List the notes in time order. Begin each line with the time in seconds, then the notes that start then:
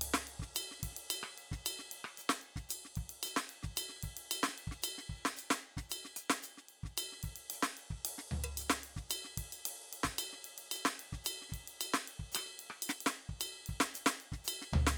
0.01 hi-hat pedal, ride
0.14 snare
0.27 ride
0.39 kick, snare
0.54 hi-hat pedal, ride bell
0.71 snare
0.79 kick, snare, ride
0.84 snare
0.92 snare
0.96 snare, ride
1.10 hi-hat pedal, ride bell
1.23 cross-stick
1.37 ride
1.51 kick, snare
1.65 hi-hat pedal, ride bell
1.79 snare
1.91 ride
2.04 cross-stick
2.17 hi-hat pedal, ride
2.29 snare
2.41 ride
2.56 kick, snare
2.69 hi-hat pedal, ride bell
2.85 snare
2.95 kick, ride
3.03 kick
3.09 ride
3.23 hi-hat pedal, ride bell
3.36 snare
3.49 ride
3.62 kick, snare
3.70 kick
3.76 hi-hat pedal, ride bell
3.89 snare
3.96 cross-stick
4.02 kick, ride
4.17 ride
4.31 hi-hat pedal, ride bell
4.43 snare
4.48 snare
4.58 ride
4.67 kick
4.71 snare
4.82 hi-hat pedal, ride bell
4.98 snare
5.09 kick, ride
5.25 snare
5.36 hi-hat pedal, ride bell
5.50 snare
5.77 kick, snare
5.89 hi-hat pedal, ride bell
6.05 snare
6.16 closed hi-hat
6.29 snare
6.42 hi-hat pedal, ride bell
6.57 snare
6.68 ride
6.83 kick, snare
6.97 hi-hat pedal, ride bell
7.12 snare
7.19 snare
7.23 kick, snare, ride
7.26 snare
7.36 ride
7.50 hi-hat pedal, ride
7.62 snare
7.77 ride
7.90 kick, cross-stick
8.05 hi-hat pedal, ride
8.18 snare
8.31 floor tom
8.44 percussion
8.57 hi-hat pedal, ride bell
8.70 snare
8.83 ride
8.96 kick, snare
9.09 hi-hat pedal, ride bell
9.24 snare
9.37 kick, ride
9.52 ride bell
9.65 hi-hat pedal, ride
9.93 ride
10.03 kick, snare
10.18 hi-hat pedal, ride bell
10.32 snare
10.44 ride
10.58 ride
10.71 hi-hat pedal, ride bell
10.85 snare
10.99 ride
11.12 kick, snare
11.24 hi-hat pedal, ride bell
11.42 snare
11.49 kick, snare
11.54 snare, ride
11.58 snare
11.63 snare
11.67 ride
11.80 hi-hat pedal, ride bell
11.94 snare
12.07 ride
12.19 kick
12.32 hi-hat pedal, ride bell
12.36 cross-stick
12.46 snare
12.59 ride
12.70 cross-stick
12.82 ride bell
12.88 snare, hi-hat pedal
13.00 ride
13.06 snare
13.29 kick
13.40 hi-hat pedal, ride bell
13.66 kick, ride
13.80 snare
13.94 hi-hat pedal, ride
14.06 snare
14.20 ride
14.32 kick, snare
14.44 hi-hat pedal, ride bell
14.61 snare
14.73 kick, floor tom
14.78 kick
14.86 snare